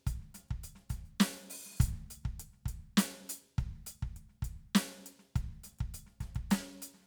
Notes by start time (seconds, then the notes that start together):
0.01 snare
0.07 closed hi-hat, kick
0.21 snare
0.34 closed hi-hat, snare
0.49 kick, closed hi-hat
0.63 closed hi-hat
0.75 snare
0.90 closed hi-hat, kick, snare
1.05 closed hi-hat
1.20 open hi-hat, snare
1.50 open hi-hat
1.66 snare
1.70 snare
1.72 snare
1.78 closed hi-hat, kick, hi-hat pedal
1.95 snare
2.10 closed hi-hat
2.24 kick, snare
2.40 closed hi-hat
2.53 snare
2.66 kick, snare, closed hi-hat
2.97 closed hi-hat, snare
3.29 closed hi-hat
3.58 kick, closed hi-hat
3.75 snare
3.86 closed hi-hat
4.02 kick, snare
4.16 closed hi-hat
4.29 snare
4.42 kick, closed hi-hat
4.75 closed hi-hat, snare
5.06 closed hi-hat
5.19 snare
5.36 kick, closed hi-hat
5.51 snare
5.64 closed hi-hat, snare
5.79 kick, closed hi-hat
5.94 closed hi-hat
6.06 snare
6.20 kick, snare, closed hi-hat
6.35 kick, closed hi-hat
6.51 closed hi-hat, snare
6.76 snare
6.82 closed hi-hat
6.94 snare
6.98 snare
7.00 snare